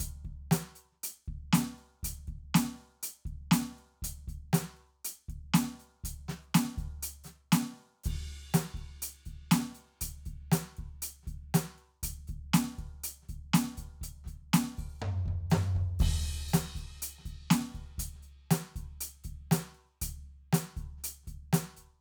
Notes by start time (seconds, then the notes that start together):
0.01 closed hi-hat, kick
0.26 kick, closed hi-hat
0.52 closed hi-hat, snare
0.76 closed hi-hat
0.93 snare
1.04 closed hi-hat
1.27 kick, closed hi-hat
1.54 closed hi-hat, snare
1.59 snare
1.79 closed hi-hat
2.04 closed hi-hat, kick
2.09 snare
2.28 kick, closed hi-hat
2.56 closed hi-hat, snare
3.04 closed hi-hat
3.26 kick, closed hi-hat
3.52 closed hi-hat, snare
3.79 closed hi-hat
4.03 closed hi-hat, kick
4.29 closed hi-hat, kick
4.54 closed hi-hat, snare
4.60 snare
4.78 closed hi-hat
5.06 closed hi-hat
5.30 kick, closed hi-hat
5.55 closed hi-hat, snare
5.62 snare
5.81 closed hi-hat
6.05 closed hi-hat, kick, snare
6.29 closed hi-hat, snare
6.56 closed hi-hat, snare
6.79 closed hi-hat, kick
7.04 closed hi-hat
7.25 closed hi-hat, snare, hi-hat pedal
7.53 closed hi-hat, snare
8.05 kick, hi-hat pedal, crash
8.55 closed hi-hat, snare
8.60 snare
8.75 kick, closed hi-hat
9.03 closed hi-hat
9.27 closed hi-hat, kick
9.52 closed hi-hat, snare
9.57 snare
9.76 closed hi-hat
10.02 closed hi-hat, kick
10.27 closed hi-hat, kick
10.53 closed hi-hat, snare
10.78 kick, closed hi-hat
11.03 closed hi-hat
11.24 snare
11.28 closed hi-hat, kick
11.55 closed hi-hat, snare
11.79 closed hi-hat
12.04 closed hi-hat, kick
12.28 closed hi-hat, kick
12.55 closed hi-hat, snare
12.79 kick, closed hi-hat
13.05 closed hi-hat
13.23 snare
13.30 closed hi-hat, kick
13.55 closed hi-hat, snare
13.78 closed hi-hat, kick
14.02 closed hi-hat, kick
14.25 closed hi-hat, kick, snare
14.54 closed hi-hat, snare
14.78 open hi-hat, kick
15.03 floor tom
15.27 kick, floor tom
15.51 snare, floor tom, hi-hat pedal
15.76 kick, floor tom
16.00 kick, hi-hat pedal, crash
16.49 hi-hat pedal
16.55 closed hi-hat, snare
16.76 closed hi-hat, kick
16.98 snare
17.03 closed hi-hat
17.19 snare
17.27 closed hi-hat, kick
17.51 closed hi-hat, snare
17.76 kick, closed hi-hat
17.99 closed hi-hat, kick
18.16 snare
18.24 closed hi-hat
18.52 closed hi-hat, snare
18.77 closed hi-hat, kick
19.02 closed hi-hat
19.25 closed hi-hat, kick
19.52 closed hi-hat, snare
19.58 snare
19.76 closed hi-hat
20.03 closed hi-hat, kick
20.54 closed hi-hat, snare
20.78 closed hi-hat, kick
20.98 snare
21.05 closed hi-hat
21.24 closed hi-hat, kick, snare
21.54 closed hi-hat, snare
21.78 closed hi-hat, kick